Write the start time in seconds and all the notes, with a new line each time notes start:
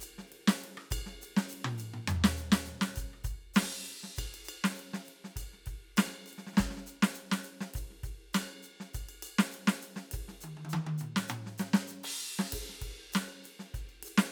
0.01 hi-hat pedal, ride bell
0.19 snare
0.27 hi-hat pedal
0.32 ride
0.48 snare
0.59 hi-hat pedal
0.64 ride
0.78 cross-stick
0.91 kick, hi-hat pedal, ride bell
0.98 kick
1.02 kick
1.07 snare
1.15 kick
1.22 hi-hat pedal, ride
1.37 snare
1.49 hi-hat pedal
1.53 ride
1.65 mid tom
1.78 hi-hat pedal, ride bell
1.94 mid tom
2.08 hi-hat pedal, floor tom
2.24 snare
2.37 hi-hat pedal
2.52 snare
2.66 floor tom, hi-hat pedal
2.82 snare
2.96 kick, hi-hat pedal, ride bell
3.04 kick
3.07 kick
3.14 cross-stick
3.21 cross-stick, snare, hi-hat pedal
3.25 kick, ride bell
3.31 kick
3.34 kick
3.54 snare, hi-hat pedal, crash
3.63 snare
3.84 hi-hat pedal
3.89 ride
4.04 snare
4.17 kick, snare, hi-hat pedal, ride bell
4.24 kick, snare
4.34 ride bell
4.45 hi-hat pedal
4.49 ride bell
4.64 snare
4.75 hi-hat pedal
4.80 ride
4.94 snare
5.05 hi-hat pedal, ride
5.25 snare
5.36 kick, hi-hat pedal, ride bell
5.53 snare
5.66 kick, hi-hat pedal, ride
5.97 snare, hi-hat pedal, ride bell
6.07 snare
6.26 hi-hat pedal, ride bell
6.33 ride
6.38 snare
6.47 snare
6.54 snare
6.57 kick, snare, hi-hat pedal
6.66 kick
6.69 kick, snare
6.77 snare
6.87 hi-hat pedal, ride bell
7.03 snare
7.14 hi-hat pedal, ride
7.32 snare
7.44 hi-hat pedal, ride
7.61 snare
7.74 kick, hi-hat pedal, ride
7.85 kick
7.91 snare
7.97 snare
8.04 kick, hi-hat pedal, ride
8.34 snare, hi-hat pedal, ride bell
8.63 hi-hat pedal, ride
8.80 snare
8.94 kick, hi-hat pedal, ride bell
9.03 kick
9.09 ride bell
9.23 hi-hat pedal, ride bell
9.39 snare
9.52 hi-hat pedal, ride
9.68 snare
9.82 hi-hat pedal, ride
9.96 snare
10.12 kick, hi-hat pedal, ride
10.23 kick
10.29 snare
10.41 hi-hat pedal, high tom
10.57 high tom
10.65 high tom
10.70 hi-hat pedal
10.74 high tom
10.87 high tom
10.98 hi-hat pedal, mid tom
11.16 snare
11.28 hi-hat pedal, mid tom
11.47 snare
11.58 snare, hi-hat pedal
11.74 snare
11.88 snare, hi-hat pedal
12.04 crash
12.16 hi-hat pedal
12.39 snare
12.49 kick, hi-hat pedal, ride
12.69 snare
12.75 cross-stick
12.81 kick, hi-hat pedal, ride
13.13 snare, hi-hat pedal, ride bell
13.44 hi-hat pedal, ride
13.60 snare
13.74 kick, snare, hi-hat pedal, ride bell
13.79 kick, snare
13.82 snare
13.89 snare, ride bell
14.03 hi-hat pedal, ride
14.18 snare